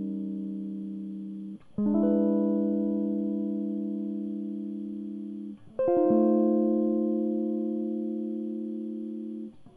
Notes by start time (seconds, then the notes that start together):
1.79 G#3
1.86 D4
1.94 E4
2.03 B4
5.79 C5
5.88 F4
5.97 D#4
6.11 A3